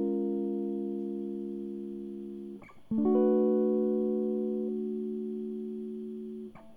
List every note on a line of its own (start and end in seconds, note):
2.92 6.52 A3
2.99 6.43 D4
3.06 6.52 F#4
3.16 4.72 B4